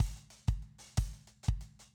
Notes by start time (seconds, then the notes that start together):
0.00 open hi-hat, kick
0.16 open hi-hat
0.31 open hi-hat
0.48 open hi-hat, kick
0.62 open hi-hat
0.79 open hi-hat
0.97 kick, open hi-hat
1.14 open hi-hat
1.27 open hi-hat
1.43 open hi-hat
1.48 kick
1.61 open hi-hat
1.79 open hi-hat